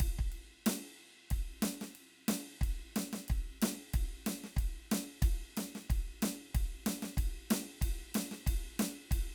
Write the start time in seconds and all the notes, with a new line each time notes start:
0.00 kick, ride
0.18 kick
0.32 ride
0.66 snare, ride
1.30 kick, ride
1.62 snare, ride
1.81 snare
1.95 ride
2.28 snare, ride
2.61 kick, ride
2.96 snare, ride
3.13 snare
3.28 kick, ride
3.62 snare, ride
3.93 kick, ride
4.26 snare, ride
4.44 snare
4.56 kick, ride
4.91 snare, ride
5.22 kick, ride
5.57 snare, ride
5.75 snare
5.90 kick, ride
6.22 snare, ride
6.54 kick, ride
6.86 snare, ride
7.02 snare
7.17 kick, ride
7.50 snare, ride
7.81 kick, ride
8.14 snare, ride
8.31 snare
8.46 kick, ride
8.79 snare, ride
9.11 kick, ride